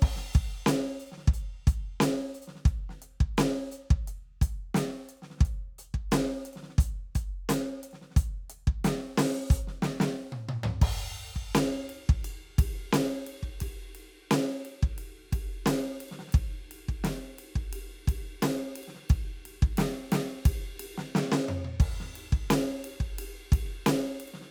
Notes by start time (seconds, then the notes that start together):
0.02 kick, crash
0.17 snare
0.34 closed hi-hat, kick
0.67 closed hi-hat, snare
1.00 closed hi-hat
1.07 closed hi-hat
1.12 snare
1.18 snare
1.23 snare
1.28 kick, snare
1.34 closed hi-hat, snare
1.68 closed hi-hat, kick
2.01 closed hi-hat, snare
2.35 closed hi-hat
2.42 closed hi-hat
2.48 snare
2.56 snare
2.66 kick, snare, closed hi-hat
2.90 snare
3.03 closed hi-hat
3.21 kick
3.38 closed hi-hat, snare
3.72 closed hi-hat
3.91 kick
4.08 closed hi-hat
4.42 kick, closed hi-hat
4.75 closed hi-hat, snare
5.10 closed hi-hat
5.18 closed hi-hat
5.23 snare
5.31 snare
5.38 kick, snare
5.46 snare, closed hi-hat
5.79 closed hi-hat
5.95 kick
6.12 closed hi-hat, snare
6.46 closed hi-hat
6.54 snare, closed hi-hat
6.63 snare
6.70 snare
6.79 closed hi-hat, kick
7.16 closed hi-hat, kick
7.50 closed hi-hat, snare
7.84 closed hi-hat
7.92 snare, closed hi-hat
8.02 snare
8.11 snare
8.17 closed hi-hat, kick
8.50 closed hi-hat
8.68 kick
8.85 open hi-hat, snare
9.18 open hi-hat, snare
9.51 open hi-hat, kick
9.68 snare
9.83 snare
10.01 snare
10.33 high tom
10.49 high tom
10.64 floor tom
10.82 kick, crash
11.37 kick
11.56 snare, ride bell
11.90 ride
12.10 kick
12.25 ride bell
12.59 kick, ride
12.93 snare, ride
13.27 ride
13.43 kick
13.61 kick, ride
13.96 ride
14.32 snare, hi-hat pedal, ride
14.66 ride
14.83 kick, snare
14.99 ride
15.33 kick, ride
15.67 snare, ride
16.01 ride
16.09 snare, ride
16.20 snare
16.28 snare
16.33 kick, ride
16.72 ride
16.89 kick
17.05 snare, ride
17.39 ride
17.56 kick
17.74 ride
18.08 kick, ride
18.43 snare, ride
18.76 ride
18.84 ride
18.88 snare
18.95 snare
19.03 snare
19.10 kick, ride
19.46 ride
19.63 kick
19.78 snare, ride
20.13 snare, ride
20.46 kick, ride
20.80 ride
20.98 snare
21.16 snare
21.33 snare
21.49 mid tom
21.65 high tom
21.81 kick, crash
22.01 snare
22.16 ride
22.33 kick
22.51 snare, ride
22.85 ride
23.01 kick
23.19 ride
23.53 kick, ride
23.87 snare, ride
24.21 ride
24.28 ride
24.34 snare
24.42 snare